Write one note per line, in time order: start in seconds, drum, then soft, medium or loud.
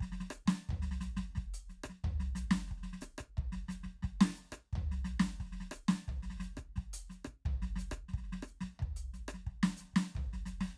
0.01 kick soft
0.01 snare soft
0.13 snare soft
0.21 snare soft
0.31 cross-stick medium
0.31 hi-hat pedal soft
0.47 kick soft
0.47 snare loud
0.70 kick soft
0.70 floor tom loud
0.83 snare medium
0.92 snare medium
1.01 snare medium
1.01 hi-hat pedal soft
1.17 kick soft
1.17 snare medium
1.36 kick soft
1.36 snare soft
1.54 open hi-hat medium
1.70 snare soft
1.70 hi-hat pedal soft
1.84 kick soft
1.84 cross-stick medium
1.90 snare soft
2.04 kick soft
2.04 floor tom loud
2.21 snare soft
2.36 snare soft
2.36 hi-hat pedal medium
2.51 kick soft
2.51 snare medium
2.68 kick soft
2.68 snare soft
2.78 snare soft
2.84 snare soft
2.94 snare soft
3.02 cross-stick medium
3.02 hi-hat pedal medium
3.19 kick soft
3.19 cross-stick medium
3.38 kick soft
3.38 floor tom medium
3.53 snare soft
3.69 snare soft
3.69 hi-hat pedal medium
3.84 kick soft
3.84 snare soft
4.03 kick soft
4.03 snare soft
4.21 snare loud
4.36 snare soft
4.36 hi-hat pedal soft
4.53 kick soft
4.53 cross-stick medium
4.73 kick soft
4.73 floor tom loud
4.92 snare soft
5.05 snare medium
5.05 hi-hat pedal soft
5.20 kick soft
5.20 snare medium
5.41 kick soft
5.41 snare soft
5.46 snare soft
5.51 snare soft
5.53 snare soft
5.61 snare soft
5.72 cross-stick medium
5.72 hi-hat pedal soft
5.89 kick soft
5.89 snare loud
6.09 kick soft
6.09 floor tom medium
6.23 snare soft
6.31 snare soft
6.38 snare soft
6.40 snare medium
6.40 hi-hat pedal soft
6.58 kick soft
6.58 cross-stick medium
6.76 kick soft
6.76 snare soft
6.94 closed hi-hat loud
7.10 snare soft
7.10 hi-hat pedal soft
7.25 kick soft
7.25 cross-stick medium
7.46 kick soft
7.46 floor tom loud
7.63 snare soft
7.76 snare soft
7.76 hi-hat pedal medium
7.92 kick soft
7.92 cross-stick medium
8.09 snare soft
8.14 kick soft
8.14 snare soft
8.24 snare soft
8.33 snare soft
8.43 cross-stick medium
8.47 hi-hat pedal soft
8.61 kick soft
8.61 snare medium
8.80 kick soft
8.80 floor tom medium
8.97 closed hi-hat medium
9.14 snare soft
9.14 hi-hat pedal soft
9.29 kick soft
9.29 cross-stick medium
9.35 snare soft
9.47 kick soft
9.47 snare soft
9.64 snare loud
9.78 snare soft
9.78 hi-hat pedal medium
9.94 kick soft
9.94 snare loud
10.02 snare soft
10.16 kick soft
10.16 floor tom medium
10.34 snare soft
10.46 snare soft
10.46 hi-hat pedal medium
10.61 kick soft
10.61 snare medium